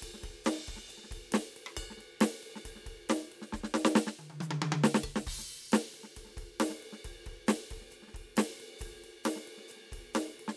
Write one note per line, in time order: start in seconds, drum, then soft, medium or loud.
0.01 kick soft
0.01 hi-hat pedal medium
0.01 ride medium
0.14 snare soft
0.21 kick soft
0.21 snare soft
0.21 ride medium
0.44 snare loud
0.44 hi-hat pedal medium
0.44 ride medium
0.68 kick soft
0.68 ride medium
0.74 kick soft
0.74 snare soft
0.88 hi-hat pedal medium
0.88 ride soft
0.98 snare soft
1.04 snare soft
1.11 kick soft
1.11 ride medium
1.17 kick soft
1.32 snare loud
1.32 hi-hat pedal medium
1.32 ride loud
1.57 ride medium
1.66 cross-stick medium
1.77 kick soft
1.77 hi-hat pedal medium
1.77 ride bell loud
1.83 kick soft
1.90 snare soft
1.97 snare soft
1.97 ride soft
2.21 snare loud
2.21 hi-hat pedal soft
2.21 ride loud
2.43 ride soft
2.56 snare soft
2.65 kick soft
2.65 hi-hat pedal medium
2.65 ride medium
2.76 snare soft
2.83 kick soft
2.83 snare soft
2.87 ride medium
3.09 snare loud
3.09 hi-hat pedal soft
3.09 ride medium
3.32 ride soft
3.42 snare soft
3.53 kick soft
3.53 snare medium
3.53 hi-hat pedal soft
3.59 kick soft
3.64 snare medium
3.74 snare loud
3.85 snare loud
3.95 snare loud
4.00 hi-hat pedal soft
4.07 snare medium
4.19 high tom medium
4.30 high tom medium
4.41 hi-hat pedal medium
4.41 high tom loud
4.51 high tom loud
4.62 high tom loud
4.72 high tom loud
4.84 snare loud
4.84 hi-hat pedal medium
4.95 snare loud
5.04 kick soft
5.04 percussion medium
5.10 kick soft
5.16 snare medium
5.25 kick soft
5.25 hi-hat pedal soft
5.25 crash loud
5.34 kick soft
5.39 cross-stick soft
5.39 snare soft
5.72 snare loud
5.72 hi-hat pedal medium
5.72 ride loud
5.94 ride medium
6.03 snare soft
6.16 kick soft
6.16 hi-hat pedal soft
6.16 ride medium
6.25 snare soft
6.29 snare soft
6.37 kick soft
6.37 ride medium
6.43 kick soft
6.60 snare loud
6.60 hi-hat pedal soft
6.60 ride loud
6.70 snare soft
6.83 ride soft
6.93 snare soft
7.05 kick soft
7.05 hi-hat pedal soft
7.05 ride medium
7.10 kick soft
7.26 kick soft
7.26 ride soft
7.32 kick soft
7.47 snare loud
7.47 hi-hat pedal soft
7.47 ride loud
7.71 kick soft
7.71 ride medium
7.77 kick soft
7.81 snare soft
7.91 hi-hat pedal soft
7.91 ride soft
8.02 snare soft
8.08 snare soft
8.14 kick soft
8.14 ride medium
8.20 kick soft
8.36 snare loud
8.36 hi-hat pedal medium
8.36 ride loud
8.60 ride medium
8.74 snare soft
8.79 kick soft
8.79 hi-hat pedal medium
8.79 ride medium
8.86 kick soft
8.86 snare soft
8.95 snare soft
9.04 ride medium
9.24 snare medium
9.24 hi-hat pedal medium
9.24 ride loud
9.36 snare soft
9.48 ride soft
9.57 snare soft
9.68 hi-hat pedal medium
9.68 ride medium
9.76 snare soft
9.80 snare soft
9.84 snare soft
9.87 snare soft
9.90 kick soft
9.90 snare soft
9.90 ride medium
9.98 kick soft
10.14 snare loud
10.14 hi-hat pedal medium
10.14 ride loud
10.40 ride medium
10.48 snare medium